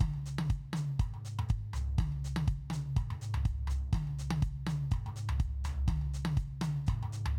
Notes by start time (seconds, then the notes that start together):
0.01 kick, hi-hat pedal, high tom
0.14 high tom
0.18 high tom
0.27 hi-hat pedal
0.39 high tom
0.51 kick, hi-hat pedal
0.74 hi-hat pedal, high tom
1.00 kick, hi-hat pedal, mid tom
1.15 mid tom
1.26 hi-hat pedal
1.40 mid tom
1.49 kick, hi-hat pedal
1.74 floor tom, hi-hat pedal
1.99 kick, hi-hat pedal, high tom
2.13 high tom
2.17 high tom
2.25 hi-hat pedal
2.37 high tom
2.48 kick, hi-hat pedal
2.71 hi-hat pedal, high tom
2.97 kick, hi-hat pedal, mid tom
3.11 mid tom
3.22 hi-hat pedal
3.35 floor tom
3.46 kick, hi-hat pedal
3.68 floor tom, hi-hat pedal
3.94 kick, hi-hat pedal, high tom
4.08 high tom
4.19 hi-hat pedal
4.31 high tom
4.43 kick, hi-hat pedal
4.68 hi-hat pedal, high tom
4.92 kick, hi-hat pedal, mid tom
5.07 mid tom
5.17 hi-hat pedal
5.30 floor tom
5.41 kick, hi-hat pedal
5.65 floor tom, hi-hat pedal
5.89 kick, hi-hat pedal, high tom
6.02 high tom
6.06 high tom
6.14 hi-hat pedal
6.26 high tom
6.38 kick, hi-hat pedal
6.62 hi-hat pedal, high tom
6.87 kick, hi-hat pedal, mid tom
7.03 mid tom
7.13 hi-hat pedal
7.26 floor tom